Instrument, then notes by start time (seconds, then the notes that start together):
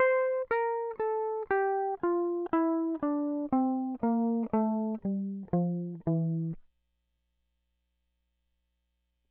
electric guitar
0.00 C5
0.51 A#4
1.00 A4
1.51 G4
2.04 F4
2.53 E4
3.03 D4
3.53 C4
4.04 A#3
4.54 A3
5.06 G3
5.54 F3
6.08 E3